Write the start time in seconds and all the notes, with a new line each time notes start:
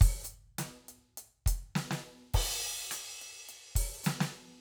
0.01 kick, open hi-hat
0.24 hi-hat pedal
0.58 snare, closed hi-hat
0.88 closed hi-hat
1.18 closed hi-hat
1.46 kick, closed hi-hat
1.75 snare
1.91 snare
2.34 kick, crash
2.62 closed hi-hat
2.91 closed hi-hat, cross-stick
3.22 closed hi-hat
3.49 closed hi-hat
3.76 kick, open hi-hat
3.83 kick
4.04 snare, hi-hat pedal
4.21 snare